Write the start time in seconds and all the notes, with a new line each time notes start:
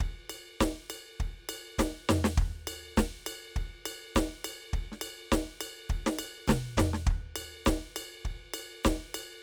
0.01 kick, ride
0.30 ride bell
0.61 kick, snare, hi-hat pedal, ride
0.91 ride bell
1.20 kick, ride
1.50 ride bell
1.79 kick, snare, hi-hat pedal, ride bell
2.10 snare, floor tom
2.25 snare
2.38 kick, snare, ride
2.68 ride bell
2.97 kick, snare, hi-hat pedal, ride
3.17 kick
3.27 ride bell
3.57 kick, ride
3.86 ride bell
4.16 kick, snare, hi-hat pedal
4.45 ride bell
4.74 kick, ride
4.92 snare
5.02 ride bell
5.32 kick, snare, hi-hat pedal
5.61 ride bell
5.90 kick, hi-hat pedal, ride
6.07 snare
6.19 kick, ride bell
6.48 kick, snare, hi-hat pedal, mid tom
6.78 kick, snare, floor tom
6.94 snare
7.07 kick
7.32 kick
7.36 ride bell
7.43 kick
7.66 kick, snare, hi-hat pedal
7.97 ride bell
8.25 kick, ride
8.52 kick, ride bell
8.84 kick, snare, hi-hat pedal, ride
9.15 ride bell